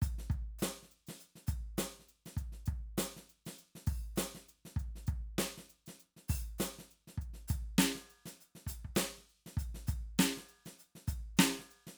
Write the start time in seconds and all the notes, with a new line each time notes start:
0.01 closed hi-hat, kick
0.18 snare
0.30 kick, open hi-hat
0.59 snare, hi-hat pedal
0.63 closed hi-hat
0.83 snare
0.91 closed hi-hat
1.07 snare, closed hi-hat
1.19 closed hi-hat
1.35 snare
1.47 closed hi-hat, kick
1.78 closed hi-hat, snare, hi-hat pedal
1.99 snare
2.08 closed hi-hat
2.25 snare, closed hi-hat
2.37 kick, closed hi-hat
2.52 snare
2.66 kick, open hi-hat
2.97 closed hi-hat, snare, hi-hat pedal
3.17 snare
3.29 closed hi-hat
3.45 snare, closed hi-hat
3.58 closed hi-hat
3.75 snare
3.87 kick, open hi-hat
4.16 closed hi-hat, snare, hi-hat pedal
4.35 snare
4.48 closed hi-hat
4.65 snare, closed hi-hat
4.76 kick, closed hi-hat
4.96 snare
5.07 kick, closed hi-hat
5.38 open hi-hat, snare, hi-hat pedal
5.58 snare
5.69 closed hi-hat
5.86 snare, closed hi-hat
6.00 closed hi-hat
6.17 snare
6.28 open hi-hat, kick
6.58 closed hi-hat, snare, hi-hat pedal
6.79 snare
6.91 closed hi-hat
7.07 snare, closed hi-hat
7.18 kick, closed hi-hat
7.34 snare
7.48 open hi-hat, kick
7.78 closed hi-hat, snare, hi-hat pedal
7.95 snare
8.10 closed hi-hat
8.26 closed hi-hat, snare
8.40 closed hi-hat
8.55 snare
8.67 closed hi-hat, kick
8.85 kick
8.95 closed hi-hat, snare, hi-hat pedal
9.18 snare
9.29 closed hi-hat
9.46 snare, closed hi-hat
9.57 closed hi-hat, kick
9.74 snare
9.87 open hi-hat, kick
10.18 closed hi-hat, snare, hi-hat pedal
10.37 snare
10.49 closed hi-hat
10.65 snare, closed hi-hat
10.79 closed hi-hat
10.95 snare
11.07 closed hi-hat, kick
11.37 closed hi-hat, snare, hi-hat pedal
11.45 snare
11.59 snare
11.71 closed hi-hat
11.87 snare